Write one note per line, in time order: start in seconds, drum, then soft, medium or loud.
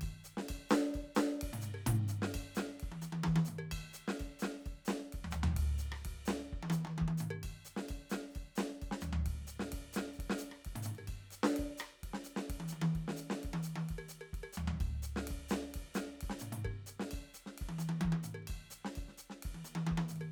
0.01 kick soft
0.01 ride bell medium
0.09 kick soft
0.24 hi-hat pedal medium
0.24 ride soft
0.37 snare medium
0.49 kick soft
0.49 ride bell medium
0.56 kick soft
0.69 snare loud
0.69 hi-hat pedal medium
0.94 kick soft
0.94 ride bell soft
1.15 snare medium
1.15 hi-hat pedal medium
1.41 kick soft
1.41 ride medium
1.50 kick soft
1.50 mid tom medium
1.61 hi-hat pedal medium
1.74 percussion medium
1.86 kick soft
1.86 mid tom loud
1.93 kick soft
2.08 hi-hat pedal medium
2.08 mid tom soft
2.22 snare medium
2.30 hi-hat pedal soft
2.30 ride bell medium
2.35 kick soft
2.55 snare medium
2.55 hi-hat pedal medium
2.80 kick soft
2.80 ride medium
2.92 high tom medium
3.02 hi-hat pedal medium
3.02 high tom medium
3.12 high tom medium
3.24 kick soft
3.24 high tom loud
3.36 high tom loud
3.45 hi-hat pedal medium
3.45 mid tom soft
3.58 percussion medium
3.71 kick soft
3.71 ride bell loud
3.93 hi-hat pedal loud
3.93 ride soft
4.08 snare medium
4.15 hi-hat pedal soft
4.20 kick soft
4.20 ride bell medium
4.39 snare medium
4.39 hi-hat pedal medium
4.60 hi-hat pedal soft
4.66 kick soft
4.66 ride bell soft
4.85 snare loud
4.85 hi-hat pedal medium
5.12 kick soft
5.12 ride medium
5.24 floor tom medium
5.31 hi-hat pedal medium
5.31 floor tom medium
5.43 floor tom loud
5.56 kick soft
5.56 ride medium
5.62 kick soft
5.78 hi-hat pedal medium
5.78 ride soft
5.92 cross-stick medium
6.05 kick soft
6.05 ride medium
6.25 snare loud
6.25 hi-hat pedal medium
6.53 kick soft
6.63 high tom medium
6.70 hi-hat pedal medium
6.70 high tom loud
6.85 high tom medium
6.87 high tom soft
6.98 kick soft
6.98 high tom medium
7.08 kick soft
7.08 high tom medium
7.17 hi-hat pedal medium
7.17 mid tom medium
7.30 percussion loud
7.43 kick soft
7.43 ride bell medium
7.65 hi-hat pedal medium
7.65 ride soft
7.76 snare medium
7.85 hi-hat pedal soft
7.85 ride bell medium
7.90 kick soft
8.10 snare medium
8.10 hi-hat pedal medium
8.30 hi-hat pedal soft
8.35 kick soft
8.35 ride bell soft
8.55 snare loud
8.55 hi-hat pedal medium
8.82 kick soft
8.82 ride bell soft
8.91 snare medium
9.01 floor tom medium
9.01 hi-hat pedal medium
9.13 floor tom medium
9.26 kick soft
9.26 ride medium
9.47 hi-hat pedal medium
9.47 ride soft
9.59 snare medium
9.67 hi-hat pedal soft
9.72 kick soft
9.72 ride medium
9.93 snare medium
9.93 hi-hat pedal loud
10.13 hi-hat pedal soft
10.19 kick soft
10.19 ride medium
10.30 snare medium
10.38 hi-hat pedal loud
10.42 ride medium
10.51 cross-stick soft
10.65 kick soft
10.65 ride medium
10.73 kick soft
10.73 mid tom medium
10.82 hi-hat pedal loud
10.82 mid tom medium
10.95 ride soft
10.95 percussion medium
11.07 kick soft
11.07 ride bell medium
11.31 hi-hat pedal medium
11.31 ride soft
11.43 snare medium
11.56 kick soft
11.56 ride medium
11.77 cross-stick medium
11.77 hi-hat pedal medium
11.98 hi-hat pedal soft
12.03 kick soft
12.03 ride medium
12.13 snare medium
12.24 hi-hat pedal medium
12.24 ride soft
12.36 snare medium
12.50 kick soft
12.50 ride medium
12.57 kick soft
12.57 high tom medium
12.68 hi-hat pedal loud
12.72 high tom medium
12.82 high tom loud
12.95 kick soft
12.95 ride soft
13.08 snare medium
13.16 hi-hat pedal medium
13.16 ride medium
13.30 snare medium
13.43 kick soft
13.43 ride medium
13.52 kick soft
13.52 high tom medium
13.63 hi-hat pedal medium
13.67 ride soft
13.76 high tom medium
13.84 hi-hat pedal soft
13.89 kick soft
13.89 ride medium
13.98 percussion medium
14.08 hi-hat pedal medium
14.08 ride soft
14.21 percussion medium
14.33 kick soft
14.33 ride soft
14.43 percussion medium
14.53 hi-hat pedal loud
14.57 floor tom medium
14.67 floor tom loud
14.77 kick medium
14.77 floor tom soft
14.77 ride bell medium
14.89 kick soft
15.02 hi-hat pedal loud
15.02 ride soft
15.16 snare medium
15.24 hi-hat pedal soft
15.24 ride medium
15.30 kick soft
15.49 snare loud
15.49 hi-hat pedal medium
15.69 hi-hat pedal soft
15.74 kick soft
15.74 ride medium
15.94 snare medium
15.94 hi-hat pedal loud
16.21 kick soft
16.21 ride medium
16.30 snare medium
16.39 hi-hat pedal medium
16.39 mid tom medium
16.52 mid tom medium
16.65 kick soft
16.65 percussion medium
16.86 hi-hat pedal medium
16.86 percussion soft
17.00 snare medium
17.08 hi-hat pedal soft
17.08 ride bell medium
17.13 kick soft
17.19 kick soft
17.34 hi-hat pedal medium
17.34 ride soft
17.46 snare soft
17.58 kick soft
17.58 ride medium
17.67 kick soft
17.67 high tom medium
17.78 hi-hat pedal medium
17.78 high tom medium
17.89 high tom medium
18.00 hi-hat pedal soft
18.00 high tom loud
18.04 kick soft
18.12 high tom medium
18.23 hi-hat pedal medium
18.23 mid tom medium
18.34 percussion medium
18.42 percussion soft
18.47 kick soft
18.47 ride bell medium
18.70 hi-hat pedal loud
18.70 ride soft
18.85 snare medium
18.92 hi-hat pedal soft
18.92 ride bell medium
18.97 kick soft
19.08 snare soft
19.18 hi-hat pedal medium
19.18 ride soft
19.30 snare soft
19.42 kick soft
19.42 ride medium
19.54 high tom medium
19.64 hi-hat pedal medium
19.75 high tom medium
19.87 high tom loud
19.91 kick soft
19.97 high tom loud
20.08 hi-hat pedal medium
20.08 mid tom soft
20.16 ride soft
20.21 percussion medium